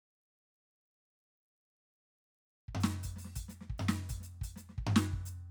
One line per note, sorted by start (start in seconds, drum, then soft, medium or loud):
2.69 kick soft
2.75 floor tom loud
2.81 snare loud
2.81 hi-hat pedal soft
3.04 closed hi-hat medium
3.04 kick soft
3.17 snare soft
3.17 hi-hat pedal medium
3.25 snare soft
3.36 closed hi-hat medium
3.36 kick soft
3.49 snare soft
3.49 hi-hat pedal medium
3.61 snare soft
3.70 kick soft
3.79 floor tom loud
3.79 hi-hat pedal soft
3.89 snare loud
4.10 closed hi-hat medium
4.10 kick soft
4.20 snare soft
4.20 hi-hat pedal medium
4.42 closed hi-hat medium
4.42 kick soft
4.56 snare soft
4.56 hi-hat pedal medium
4.69 snare soft
4.78 kick soft
4.87 floor tom loud
4.96 snare loud
5.14 kick soft
5.26 hi-hat pedal medium